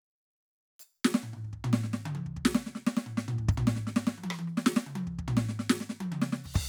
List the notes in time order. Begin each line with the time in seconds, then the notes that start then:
0.80 percussion
1.05 snare
1.15 snare
1.23 floor tom
1.34 floor tom
1.45 kick
1.53 kick
1.65 floor tom
1.73 snare
1.84 snare
1.94 snare
2.06 mid tom
2.15 high tom
2.26 kick
2.37 kick
2.46 snare
2.55 snare
2.67 snare
2.76 snare
2.87 snare
3.07 floor tom
3.18 snare
3.29 floor tom
3.39 kick
3.49 kick, percussion
3.58 floor tom
3.67 snare
3.76 snare
3.87 snare
3.96 snare
4.07 snare
4.18 high tom
4.24 high tom
4.31 high tom
4.39 high tom
4.48 cross-stick
4.58 snare
4.67 snare
4.77 snare
4.87 mid tom
4.96 high tom
5.07 kick
5.19 kick
5.28 floor tom
5.37 snare
5.49 snare
5.60 snare
5.70 snare
5.81 snare
5.90 snare
6.01 high tom
6.12 mid tom
6.22 snare
6.33 snare
6.44 kick, crash
6.54 kick, crash